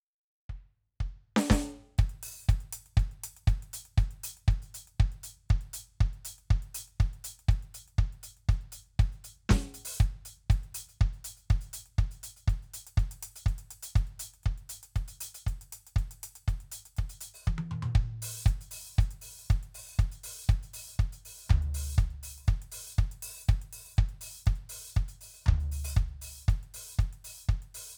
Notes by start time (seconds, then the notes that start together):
0.49 kick
1.00 kick
1.36 snare
1.50 kick, snare
1.98 kick, closed hi-hat
2.09 closed hi-hat
2.23 open hi-hat
2.43 hi-hat pedal
2.49 kick, closed hi-hat
2.60 closed hi-hat
2.73 closed hi-hat
2.86 closed hi-hat
2.97 kick, closed hi-hat
3.11 closed hi-hat
3.24 closed hi-hat
3.37 closed hi-hat
3.47 kick, closed hi-hat
3.62 closed hi-hat
3.73 closed hi-hat
3.85 closed hi-hat
3.98 closed hi-hat, kick
4.11 closed hi-hat
4.17 kick
4.24 closed hi-hat
4.37 closed hi-hat
4.48 kick, closed hi-hat
4.62 closed hi-hat
4.74 closed hi-hat
4.87 closed hi-hat
5.00 kick, closed hi-hat
5.12 closed hi-hat
5.23 closed hi-hat
5.38 closed hi-hat
5.49 kick, closed hi-hat
5.61 closed hi-hat
5.73 closed hi-hat
5.87 closed hi-hat
6.01 kick, closed hi-hat
6.13 closed hi-hat
6.25 closed hi-hat
6.38 closed hi-hat
6.50 kick, closed hi-hat
6.62 closed hi-hat
6.75 closed hi-hat
6.88 closed hi-hat
7.00 kick, closed hi-hat
7.13 closed hi-hat
7.24 closed hi-hat
7.39 closed hi-hat
7.49 kick, closed hi-hat
7.62 closed hi-hat
7.74 closed hi-hat
7.88 closed hi-hat
7.98 kick, closed hi-hat
8.12 closed hi-hat
8.23 closed hi-hat
8.37 closed hi-hat
8.49 closed hi-hat, kick
8.61 closed hi-hat
8.72 closed hi-hat
8.86 closed hi-hat
8.99 kick, closed hi-hat
9.12 closed hi-hat
9.24 closed hi-hat
9.49 kick, snare
9.71 closed hi-hat, kick
9.85 open hi-hat
9.96 kick, hi-hat pedal
10.01 closed hi-hat
10.12 closed hi-hat
10.21 closed hi-hat, kick
10.36 closed hi-hat
10.50 kick, closed hi-hat
10.63 closed hi-hat
10.72 closed hi-hat, kick
10.89 closed hi-hat
11.01 kick, closed hi-hat
11.13 closed hi-hat
11.24 closed hi-hat
11.37 closed hi-hat
11.50 kick, closed hi-hat
11.61 closed hi-hat
11.73 closed hi-hat
11.86 closed hi-hat
11.98 kick, closed hi-hat
12.11 closed hi-hat
12.23 closed hi-hat
12.36 closed hi-hat
12.48 kick, closed hi-hat
12.62 closed hi-hat
12.74 closed hi-hat
12.87 closed hi-hat
12.97 kick, closed hi-hat
13.11 closed hi-hat
13.23 closed hi-hat
13.36 closed hi-hat
13.46 kick, closed hi-hat
13.58 closed hi-hat
13.66 kick
13.71 closed hi-hat
13.83 closed hi-hat
13.96 kick, closed hi-hat
14.07 closed hi-hat
14.18 closed hi-hat, kick
14.34 closed hi-hat
14.43 kick, closed hi-hat
14.58 closed hi-hat
14.69 closed hi-hat
14.83 closed hi-hat
14.96 kick, closed hi-hat
15.08 closed hi-hat
15.21 closed hi-hat
15.34 closed hi-hat
15.47 kick, closed hi-hat
15.61 closed hi-hat
15.72 closed hi-hat
15.87 closed hi-hat
15.96 kick, closed hi-hat
16.11 closed hi-hat
16.23 closed hi-hat
16.35 closed hi-hat
16.48 kick, closed hi-hat
16.60 closed hi-hat
16.70 closed hi-hat, kick
16.85 closed hi-hat
16.97 kick, closed hi-hat
17.09 closed hi-hat
17.21 closed hi-hat
17.34 open hi-hat
17.44 kick, hi-hat pedal, high tom
17.58 high tom
17.71 mid tom
17.82 mid tom
17.95 kick
18.15 kick
18.22 open hi-hat
18.39 open hi-hat
18.44 kick, closed hi-hat, hi-hat pedal
18.61 closed hi-hat
18.71 open hi-hat
18.87 open hi-hat
18.95 kick, hi-hat pedal
18.99 closed hi-hat
19.11 closed hi-hat
19.21 open hi-hat
19.39 open hi-hat
19.46 hi-hat pedal
19.50 kick, closed hi-hat
19.63 closed hi-hat
19.75 open hi-hat
19.89 open hi-hat
19.95 kick, hi-hat pedal
19.99 closed hi-hat
20.12 closed hi-hat
20.24 open hi-hat
20.39 open hi-hat
20.45 hi-hat pedal
20.49 kick, closed hi-hat
20.63 closed hi-hat
20.74 open hi-hat
20.88 open hi-hat
20.93 hi-hat pedal
20.99 kick, closed hi-hat
21.12 closed hi-hat
21.25 open hi-hat
21.38 open hi-hat
21.47 kick, floor tom, hi-hat pedal
21.62 closed hi-hat
21.74 open hi-hat
21.89 open hi-hat
21.95 kick, hi-hat pedal
21.99 closed hi-hat
22.10 closed hi-hat
22.23 open hi-hat
22.38 open hi-hat
22.44 kick, closed hi-hat, hi-hat pedal
22.62 closed hi-hat
22.72 open hi-hat
22.87 open hi-hat
22.92 hi-hat pedal
22.98 kick, closed hi-hat
23.11 closed hi-hat
23.23 open hi-hat
23.38 hi-hat pedal, open hi-hat
23.48 kick, closed hi-hat
23.62 closed hi-hat
23.73 open hi-hat
23.86 open hi-hat
23.92 hi-hat pedal
23.97 kick, closed hi-hat
24.09 closed hi-hat
24.17 open hi-hat, kick
24.33 open hi-hat
24.40 hi-hat pedal
24.46 kick, closed hi-hat
24.56 closed hi-hat
24.67 open hi-hat, kick
24.82 open hi-hat
24.91 hi-hat pedal
24.96 kick, closed hi-hat
25.08 closed hi-hat
25.21 open hi-hat
25.33 open hi-hat
25.43 floor tom, hi-hat pedal
25.48 kick
25.60 closed hi-hat
25.68 open hi-hat, kick
25.84 open hi-hat
25.91 hi-hat pedal
25.97 kick, closed hi-hat
26.08 closed hi-hat
26.22 open hi-hat
26.38 hi-hat pedal, open hi-hat
26.48 kick, closed hi-hat
26.63 closed hi-hat
26.74 open hi-hat
26.88 open hi-hat
26.93 hi-hat pedal
26.99 kick, closed hi-hat
27.13 closed hi-hat
27.24 open hi-hat
27.38 open hi-hat
27.43 hi-hat pedal
27.49 kick, closed hi-hat
27.62 closed hi-hat
27.74 open hi-hat
27.89 hi-hat pedal, open hi-hat